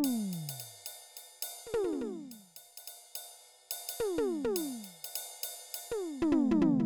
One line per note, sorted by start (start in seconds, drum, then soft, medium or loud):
0.05 ride loud
0.33 ride medium
0.49 ride loud
0.60 ride bell medium
0.87 ride loud
1.17 ride bell medium
1.43 ride bell loud
1.67 mid tom medium
1.74 mid tom loud
1.84 mid tom medium
1.93 mid tom medium
2.01 mid tom medium
2.32 ride medium
2.57 ride medium
2.78 ride bell medium
2.88 ride medium
3.16 ride loud
3.71 ride loud
3.89 ride loud
4.00 mid tom loud
4.18 mid tom loud
4.45 mid tom loud
4.57 ride loud
4.85 ride medium
5.05 ride loud
5.16 ride loud
5.44 ride loud
5.75 ride loud
5.92 mid tom loud
6.22 floor tom loud
6.32 floor tom loud
6.51 floor tom loud
6.62 floor tom loud
6.80 floor tom medium